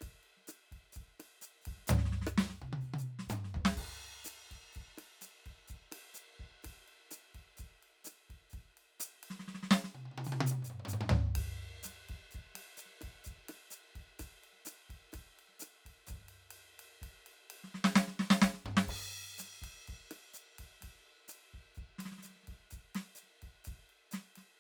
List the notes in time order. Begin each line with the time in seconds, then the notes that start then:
0.01 kick, cross-stick, snare, hi-hat pedal, ride
0.08 kick
0.24 ride
0.37 snare
0.48 cross-stick, hi-hat pedal, ride
0.72 kick, ride
0.93 kick, hi-hat pedal
0.97 ride
1.01 kick
1.20 cross-stick, ride
1.42 hi-hat pedal, ride
1.62 hi-hat pedal, ride
1.67 kick
1.73 kick
1.78 snare
1.88 hi-hat pedal, floor tom
1.99 snare
2.06 snare
2.13 snare
2.22 snare
2.27 cross-stick
2.38 snare
2.50 snare
2.62 kick, high tom
2.73 high tom
2.81 kick, hi-hat pedal
2.86 high tom
2.94 open hi-hat, high tom
2.99 hi-hat pedal
3.07 high tom
3.19 snare
3.27 kick, hi-hat pedal, mid tom
3.44 snare
3.55 kick, floor tom
3.62 kick, snare
3.73 snare
3.77 kick, crash
3.83 kick
4.25 cross-stick, hi-hat pedal, ride
4.51 kick, ride
4.73 kick, hi-hat pedal, ride
4.81 kick
4.98 cross-stick, snare, ride
5.22 snare, hi-hat pedal, ride
5.46 kick, ride
5.68 kick, hi-hat pedal, ride
5.75 kick
5.92 cross-stick, ride
6.14 hi-hat pedal
6.40 kick
6.45 kick
6.63 kick, cross-stick, hi-hat pedal, ride
6.71 kick
6.88 ride
7.11 cross-stick, hi-hat pedal, ride
7.35 kick, ride
7.57 kick, hi-hat pedal, ride
7.65 kick
7.83 ride
8.05 cross-stick, snare, hi-hat pedal, ride
8.30 kick, ride
8.50 kick, hi-hat pedal, ride
8.59 kick
8.78 ride
9.00 hi-hat pedal, ride
9.23 ride
9.31 snare
9.40 snare
9.48 snare
9.55 snare
9.63 snare
9.71 snare
9.84 snare
9.95 high tom
10.06 high tom
10.12 high tom
10.18 high tom
10.25 hi-hat pedal, high tom
10.33 high tom
10.41 high tom
10.47 hi-hat pedal
10.52 high tom
10.63 hi-hat pedal, mid tom
10.70 mid tom
10.80 mid tom
10.86 hi-hat pedal, mid tom
10.94 mid tom
11.01 mid tom
11.10 floor tom
11.36 kick, ride
11.43 kick
11.83 snare, hi-hat pedal, ride
12.09 kick, ride
12.16 kick
12.31 kick, hi-hat pedal, ride
12.40 kick
12.55 snare, ride
12.77 hi-hat pedal, ride
12.86 snare
13.01 kick, cross-stick, ride
13.09 kick
13.24 kick, hi-hat pedal, ride
13.32 kick, snare
13.49 cross-stick, snare, ride
13.71 hi-hat pedal, ride
13.96 kick, ride
14.19 kick, cross-stick, snare, hi-hat pedal, ride
14.25 kick
14.44 ride
14.53 snare
14.66 cross-stick, hi-hat pedal, ride
14.90 kick, ride
15.12 kick, cross-stick, hi-hat pedal, ride
15.20 kick
15.39 ride
15.49 snare
15.60 cross-stick, hi-hat pedal, ride
15.86 kick, ride
16.07 kick, cross-stick, hi-hat pedal, ride, floor tom
16.15 kick, snare
16.21 snare
16.29 ride
16.51 ride
16.80 ride
17.02 kick, ride
17.27 ride
17.50 ride
17.64 snare
17.75 snare
17.85 snare
17.94 kick, snare
18.08 snare
18.20 snare
18.31 snare
18.42 kick, snare
18.54 snare
18.65 kick, mid tom
18.70 kick
18.77 snare
18.87 kick, crash
19.38 snare, hi-hat pedal, ride
19.62 kick, ride
19.67 kick
19.88 kick, snare, ride
19.94 kick
20.11 cross-stick, snare, ride
20.34 hi-hat pedal
20.59 kick, ride
20.81 kick, snare, hi-hat pedal, ride
20.89 kick
21.28 cross-stick, hi-hat pedal, ride
21.54 kick, ride
21.75 kick, hi-hat pedal
21.99 snare, ride
22.06 snare
22.12 snare
22.19 snare
22.23 snare, hi-hat pedal, ride
22.30 snare
22.36 snare
22.44 snare
22.48 kick, snare, ride
22.53 kick, snare
22.62 snare
22.71 kick, hi-hat pedal, ride
22.78 kick
22.95 snare, ride
23.15 hi-hat pedal, ride
23.23 snare
23.42 kick, ride
23.64 kick, hi-hat pedal, ride
23.73 kick
23.90 ride
24.12 snare, hi-hat pedal, ride
24.36 snare, ride